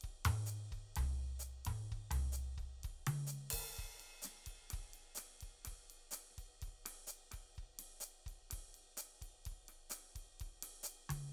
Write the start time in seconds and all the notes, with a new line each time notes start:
0.01 kick, ride
0.09 kick
0.25 mid tom, ride
0.46 hi-hat pedal
0.72 kick, ride
0.77 kick
0.96 kick, floor tom, ride
1.04 kick
1.39 hi-hat pedal, ride
1.65 kick, mid tom, ride
1.72 kick
1.92 kick
1.97 kick
2.11 floor tom, ride
2.32 hi-hat pedal
2.36 ride
2.58 kick, ride
2.63 kick
2.83 kick, ride
2.89 kick
3.07 high tom, ride
3.27 hi-hat pedal
3.31 ride
3.50 kick, crash, ride
3.58 kick
3.77 kick, ride
3.84 kick
4.00 ride
4.22 snare, hi-hat pedal, ride
4.46 kick, ride
4.70 kick, cross-stick, ride
4.79 kick
4.94 ride
5.15 cross-stick, snare, hi-hat pedal, ride
5.41 kick, ride
5.64 kick, cross-stick, snare, ride
5.72 kick
5.90 ride
6.11 cross-stick, snare, hi-hat pedal, ride
6.30 snare
6.38 kick, ride
6.62 kick, ride
6.67 kick
6.85 cross-stick, snare, ride
7.07 hi-hat pedal
7.31 kick, cross-stick, ride
7.56 kick, ride
7.63 kick
7.79 snare, ride
8.00 hi-hat pedal, ride
8.26 kick, ride
8.31 kick
8.50 kick, cross-stick, ride
8.58 kick
8.74 ride
8.97 cross-stick, hi-hat pedal, ride
9.21 kick, ride
9.45 kick, ride
9.51 kick
9.68 cross-stick, ride
9.90 cross-stick, hi-hat pedal, ride
10.15 kick, ride
10.40 kick, ride
10.46 kick
10.63 cross-stick, ride
10.83 hi-hat pedal
10.88 ride
11.09 kick, high tom, ride
11.16 kick